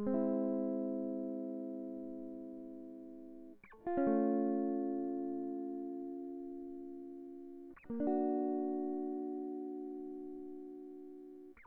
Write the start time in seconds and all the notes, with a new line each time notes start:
0.00 G#3
0.07 C4
0.15 E4
3.87 F4
3.98 C#4
4.08 A3
7.91 A#3
8.01 D4
8.07 F#4